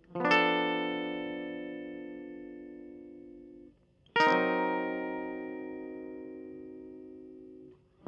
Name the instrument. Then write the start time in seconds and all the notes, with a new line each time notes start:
electric guitar
0.16 F3
0.21 B3
0.25 D4
0.31 A4
4.16 A#4
4.20 D#4
4.27 C4
4.32 F#3